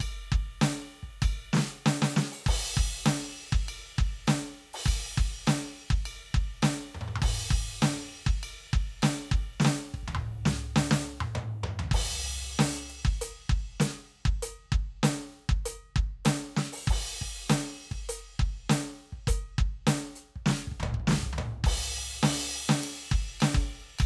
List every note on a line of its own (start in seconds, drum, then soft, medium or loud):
0.01 kick loud
0.01 ride bell loud
0.32 kick loud
0.32 snare soft
0.62 snare loud
0.62 ride bell loud
1.03 kick medium
1.22 kick loud
1.22 ride bell loud
1.53 snare loud
1.57 snare loud
1.86 snare loud
1.91 hi-hat pedal medium
2.02 snare loud
2.17 snare loud
2.31 open hi-hat medium
2.46 kick loud
2.46 crash loud
2.77 kick loud
3.06 snare loud
3.06 ride loud
3.53 kick loud
3.53 snare soft
3.69 ride bell loud
3.99 kick loud
4.28 snare loud
4.28 ride bell loud
4.74 crash loud
4.86 kick loud
4.86 ride bell loud
5.18 kick loud
5.47 snare loud
5.47 ride bell loud
5.91 kick loud
6.06 ride bell loud
6.34 kick loud
6.63 snare loud
6.63 ride bell loud
6.95 mid tom medium
7.01 high tom medium
7.08 mid tom medium
7.16 high tom loud
7.22 kick loud
7.22 crash loud
7.51 kick loud
7.82 snare loud
7.82 ride bell loud
8.27 kick loud
8.43 ride bell loud
8.73 kick loud
8.73 snare soft
9.03 snare loud
9.03 ride bell loud
9.32 kick loud
9.32 snare soft
9.60 snare loud
9.65 snare loud
9.94 kick medium
10.03 kick soft
10.08 floor tom loud
10.15 high tom loud
10.46 snare loud
10.76 snare loud
10.91 snare loud
11.21 high tom loud
11.35 high tom loud
11.64 mid tom loud
11.79 floor tom loud
11.92 kick loud
11.92 crash loud
12.59 open hi-hat loud
12.59 snare loud
12.90 closed hi-hat medium
13.05 kick loud
13.22 closed hi-hat loud
13.50 kick loud
13.80 closed hi-hat loud
13.80 snare loud
14.26 kick loud
14.43 closed hi-hat loud
14.72 kick loud
15.03 closed hi-hat loud
15.03 snare loud
15.49 kick loud
15.66 closed hi-hat loud
15.96 kick loud
16.25 closed hi-hat loud
16.25 snare loud
16.57 snare loud
16.73 open hi-hat loud
16.88 kick loud
16.88 hi-hat pedal soft
16.88 crash loud
17.22 kick medium
17.50 closed hi-hat loud
17.50 snare loud
17.91 kick medium
18.09 open hi-hat loud
18.40 kick loud
18.70 closed hi-hat loud
18.70 snare loud
19.13 kick medium
19.28 closed hi-hat loud
19.28 kick loud
19.59 kick loud
19.87 closed hi-hat loud
19.87 snare loud
20.16 closed hi-hat medium
20.36 kick medium
20.46 snare loud
20.49 kick soft
20.49 snare loud
20.68 kick medium
20.68 snare soft
20.72 kick medium
20.72 snare soft
20.80 floor tom loud
20.80 high tom loud
20.94 kick medium
21.00 kick medium
21.07 snare loud
21.11 snare loud
21.23 kick medium
21.26 kick medium
21.26 snare soft
21.33 kick soft
21.33 floor tom loud
21.38 high tom loud
21.64 kick loud
21.64 crash loud
22.23 snare loud
22.23 crash loud
22.69 snare loud
22.84 ride loud
23.12 kick loud
23.41 snare loud
23.41 ride bell loud
23.55 kick loud
23.99 kick loud
23.99 ride bell loud